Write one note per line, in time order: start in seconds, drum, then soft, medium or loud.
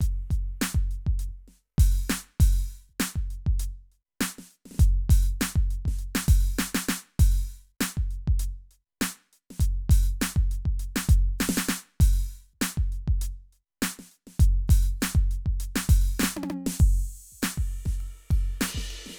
0.01 closed hi-hat loud
0.01 kick medium
0.31 closed hi-hat medium
0.31 kick medium
0.62 closed hi-hat loud
0.62 snare loud
0.75 kick medium
0.91 closed hi-hat soft
1.07 kick medium
1.20 closed hi-hat medium
1.29 kick soft
1.48 snare soft
1.79 open hi-hat loud
1.79 kick loud
2.08 snare loud
2.08 hi-hat pedal medium
2.40 open hi-hat loud
2.40 kick loud
2.90 kick soft
3.00 open hi-hat loud
3.00 snare loud
3.00 hi-hat pedal medium
3.16 kick medium
3.31 closed hi-hat soft
3.47 kick medium
3.60 closed hi-hat loud
3.92 closed hi-hat soft
4.21 closed hi-hat loud
4.21 snare loud
4.39 snare soft
4.51 closed hi-hat soft
4.66 snare soft
4.71 snare soft
4.75 snare soft
4.78 closed hi-hat loud
4.78 kick loud
4.78 snare soft
5.10 open hi-hat loud
5.10 kick loud
5.40 closed hi-hat loud
5.40 snare loud
5.40 hi-hat pedal soft
5.56 kick loud
5.71 closed hi-hat medium
5.86 kick medium
5.86 snare soft
5.99 closed hi-hat medium
6.15 snare loud
6.29 open hi-hat loud
6.29 kick loud
6.59 snare loud
6.59 hi-hat pedal medium
6.75 snare loud
6.89 snare loud
7.20 open hi-hat loud
7.20 kick loud
7.81 open hi-hat loud
7.81 snare loud
7.81 hi-hat pedal soft
7.97 kick medium
8.11 closed hi-hat soft
8.28 kick loud
8.40 closed hi-hat loud
8.71 closed hi-hat soft
9.02 closed hi-hat loud
9.02 snare loud
9.33 closed hi-hat soft
9.51 snare soft
9.60 closed hi-hat loud
9.60 kick loud
9.90 open hi-hat loud
9.90 kick loud
10.21 closed hi-hat loud
10.21 snare loud
10.21 hi-hat pedal medium
10.37 kick loud
10.52 closed hi-hat medium
10.66 kick medium
10.80 closed hi-hat medium
10.96 snare loud
11.09 open hi-hat loud
11.09 kick loud
11.39 snare loud
11.39 hi-hat pedal medium
11.49 snare loud
11.58 snare loud
11.69 snare loud
12.01 open hi-hat loud
12.01 kick loud
12.54 kick soft
12.62 open hi-hat loud
12.62 snare loud
12.62 hi-hat pedal medium
12.78 kick medium
12.92 closed hi-hat soft
13.08 kick medium
13.22 closed hi-hat loud
13.53 closed hi-hat soft
13.82 closed hi-hat loud
13.82 snare loud
13.99 snare soft
14.12 closed hi-hat soft
14.27 snare soft
14.40 closed hi-hat loud
14.40 kick loud
14.68 open hi-hat loud
14.68 kick loud
14.68 hi-hat pedal soft
15.01 closed hi-hat loud
15.01 snare loud
15.01 hi-hat pedal medium
15.15 kick loud
15.31 closed hi-hat medium
15.46 kick medium
15.60 closed hi-hat loud
15.76 snare loud
15.89 open hi-hat loud
15.89 kick loud
16.20 snare loud
16.20 hi-hat pedal soft
16.23 snare loud
16.37 high tom loud
16.43 high tom loud
16.49 hi-hat pedal soft
16.49 high tom loud
16.67 snare loud
16.79 kick loud
16.79 hi-hat pedal soft
16.79 crash loud
17.32 kick soft
17.41 snare loud
17.41 hi-hat pedal medium
17.41 ride loud
17.58 kick medium
17.70 hi-hat pedal soft
17.70 ride medium
17.86 kick medium
17.86 snare soft
17.99 hi-hat pedal soft
17.99 ride medium
18.31 kick loud
18.31 ride loud
18.61 snare loud
18.61 hi-hat pedal medium
18.61 ride loud
18.75 kick medium
18.75 snare soft
18.91 ride loud
19.06 snare soft
19.10 snare soft